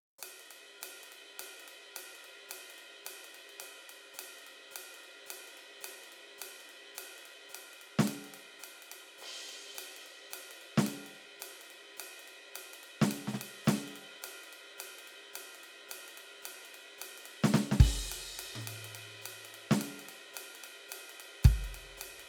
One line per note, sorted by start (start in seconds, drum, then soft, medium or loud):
0.18 hi-hat pedal medium
0.23 ride loud
0.39 ride soft
0.51 ride medium
0.81 hi-hat pedal medium
0.81 ride loud
1.03 ride medium
1.12 ride medium
1.39 hi-hat pedal medium
1.39 ride loud
1.60 ride medium
1.68 ride medium
1.95 hi-hat pedal medium
1.95 ride loud
2.15 ride soft
2.24 ride medium
2.49 hi-hat pedal medium
2.49 ride loud
2.70 ride medium
2.78 ride soft
3.05 hi-hat pedal medium
3.05 ride loud
3.24 ride medium
3.34 ride medium
3.49 ride soft
3.60 hi-hat pedal medium
3.60 ride loud
3.89 ride medium
4.14 hi-hat pedal medium
4.19 ride loud
4.38 ride soft
4.47 ride medium
4.71 hi-hat pedal medium
4.76 ride loud
4.94 ride soft
5.03 ride soft
5.26 hi-hat pedal medium
5.30 ride loud
5.47 ride soft
5.57 ride soft
5.81 hi-hat pedal medium
5.81 ride loud
6.03 ride soft
6.12 ride soft
6.38 hi-hat pedal medium
6.38 ride loud
6.60 ride soft
6.69 ride soft
6.95 hi-hat pedal medium
6.95 ride loud
7.18 ride soft
7.25 ride medium
7.49 hi-hat pedal medium
7.55 ride loud
7.73 ride soft
7.81 ride medium
7.99 snare loud
7.99 hi-hat pedal medium
8.07 ride loud
8.24 ride medium
8.34 ride medium
8.59 hi-hat pedal medium
8.64 ride loud
8.82 ride medium
8.91 ride loud
9.18 hi-hat pedal medium
9.18 ride loud
9.41 ride soft
9.49 ride medium
9.74 hi-hat pedal medium
9.74 ride loud
9.96 ride medium
10.06 ride soft
10.30 hi-hat pedal medium
10.30 ride loud
10.51 ride medium
10.61 ride soft
10.77 snare loud
10.77 hi-hat pedal medium
10.86 ride loud
11.06 ride medium
11.15 ride soft
11.39 hi-hat pedal medium
11.39 ride loud
11.61 ride medium
11.70 ride medium
11.97 hi-hat pedal medium
11.97 ride loud
12.19 ride medium
12.28 ride medium
12.54 hi-hat pedal medium
12.54 ride loud
12.73 ride medium
12.83 ride medium
13.01 snare loud
13.01 hi-hat pedal medium
13.11 ride loud
13.27 snare medium
13.33 snare medium
13.41 ride loud
13.64 snare loud
13.64 hi-hat pedal medium
13.68 ride loud
13.88 ride medium
13.96 ride medium
14.22 hi-hat pedal medium
14.22 ride loud
14.43 ride soft
14.53 ride medium
14.78 hi-hat pedal medium
14.78 ride loud
14.98 ride medium
15.07 ride medium
15.33 hi-hat pedal medium
15.33 ride loud
15.55 ride medium
15.63 ride medium
15.88 hi-hat pedal medium
15.88 ride loud
16.08 ride medium
16.17 ride medium
16.42 hi-hat pedal medium
16.42 ride loud
16.65 ride medium
16.74 ride medium
16.98 hi-hat pedal medium
16.98 ride loud
17.18 ride medium
17.25 ride medium
17.42 snare loud
17.42 hi-hat pedal soft
17.54 snare loud
17.71 snare medium
17.80 kick loud
17.80 crash loud
18.04 hi-hat pedal medium
18.12 ride loud
18.39 ride loud
18.55 high tom medium
18.60 hi-hat pedal medium
18.67 ride loud
18.84 ride medium
18.95 ride medium
19.21 hi-hat pedal medium
19.26 ride loud
19.45 ride medium
19.54 ride medium
19.71 snare loud
19.71 hi-hat pedal medium
19.81 ride loud
19.99 ride medium
20.09 ride medium
20.34 hi-hat pedal medium
20.34 ride loud
20.55 ride medium
20.64 ride medium
20.89 hi-hat pedal medium
20.89 ride loud
21.09 ride medium
21.20 ride medium
21.43 kick loud
21.43 hi-hat pedal medium
21.43 ride loud
21.64 ride medium
21.74 ride medium
21.97 hi-hat pedal medium
21.97 ride loud
22.20 ride medium